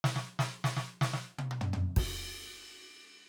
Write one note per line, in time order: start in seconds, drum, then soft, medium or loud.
0.04 snare loud
0.16 snare medium
0.39 snare loud
0.64 snare loud
0.77 snare loud
1.01 snare loud
1.13 snare medium
1.39 high tom loud
1.51 high tom loud
1.61 mid tom loud
1.73 mid tom loud
1.96 kick loud
1.96 ride loud
1.96 crash loud